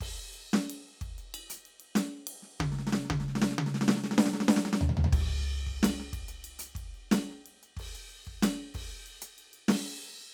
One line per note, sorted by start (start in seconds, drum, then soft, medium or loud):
0.01 kick medium
0.01 crash loud
0.18 closed hi-hat soft
0.34 ride soft
0.54 snare loud
0.70 ride medium
0.89 closed hi-hat soft
1.01 kick medium
1.01 ride soft
1.18 closed hi-hat medium
1.34 ride bell loud
1.50 closed hi-hat loud
1.66 ride soft
1.80 ride medium
1.96 snare loud
1.96 ride bell medium
2.15 snare soft
2.27 ride loud
2.43 snare soft
2.60 kick medium
2.60 high tom loud
2.72 snare soft
2.79 snare soft
2.87 snare medium
2.93 snare loud
3.05 snare soft
3.10 kick medium
3.10 high tom loud
3.20 snare soft
3.28 snare soft
3.36 snare medium
3.42 snare loud
3.51 snare medium
3.59 high tom loud
3.67 snare medium
3.75 snare medium
3.81 snare medium
3.88 snare loud
3.97 snare medium
4.02 kick soft
4.02 snare medium
4.11 snare medium
4.18 snare loud
4.26 snare medium
4.34 snare medium
4.41 snare medium
4.49 snare loud
4.57 snare loud
4.65 snare medium
4.73 snare loud
4.81 floor tom loud
4.90 floor tom loud
4.97 floor tom loud
5.05 floor tom loud
5.13 kick loud
5.13 ride loud
5.67 kick soft
5.83 snare loud
5.83 ride bell loud
6.00 snare soft
6.13 kick medium
6.13 ride medium
6.29 closed hi-hat medium
6.44 ride bell medium
6.59 closed hi-hat loud
6.75 kick medium
6.75 ride medium
6.95 ride soft
7.12 snare loud
7.12 ride bell loud
7.30 snare soft
7.46 ride medium
7.63 closed hi-hat medium
7.77 kick medium
7.77 crash medium
7.95 closed hi-hat medium
8.10 ride soft
8.25 kick soft
8.25 ride soft
8.43 snare loud
8.43 ride bell loud
8.75 kick medium
8.75 crash medium
8.90 closed hi-hat soft
9.06 ride soft
9.22 closed hi-hat loud
9.38 ride bell soft
9.53 ride bell soft
9.69 snare loud
9.69 crash loud
10.04 ride soft
10.21 closed hi-hat soft